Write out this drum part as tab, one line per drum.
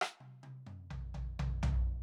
SD |r---------------|
T1 |-go-------------|
T2 |---o------------|
FT |----oooo--------|